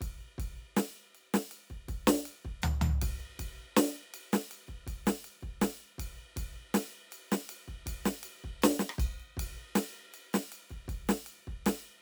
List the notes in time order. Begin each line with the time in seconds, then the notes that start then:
0.01 kick, ride
0.21 ride
0.38 kick, ride
0.59 ride
0.77 snare, ride
0.96 ride
1.15 ride
1.34 snare, ride
1.51 ride
1.70 kick, ride
1.89 kick, ride
2.07 snare
2.24 hi-hat pedal, ride
2.45 kick
2.62 hi-hat pedal, floor tom
2.82 floor tom
3.02 kick, ride
3.20 ride
3.39 kick, ride
3.58 ride
3.77 snare, ride
3.96 ride
4.14 ride
4.33 snare, ride
4.51 ride
4.68 kick, ride
4.87 kick, ride
5.06 snare, ride
5.25 ride
5.41 kick, ride
5.62 snare, ride
5.80 ride
5.98 kick, ride
6.18 ride
6.37 kick, ride
6.56 ride
6.74 snare, ride
6.93 ride
7.11 hi-hat pedal, ride
7.32 snare, ride
7.49 ride
7.68 kick, ride
7.86 kick, ride
8.05 snare, ride
8.23 ride
8.41 kick, ride
8.62 snare, ride bell
8.80 snare
8.90 cross-stick
8.98 kick, ride bell
9.20 ride
9.37 kick, ride
9.56 ride
9.76 snare, ride
9.93 ride
10.12 hi-hat pedal, ride
10.33 snare, ride
10.52 ride
10.70 kick, ride
10.88 kick, ride
11.07 snare, ride
11.26 ride
11.46 kick, ride
11.66 snare, ride
11.83 ride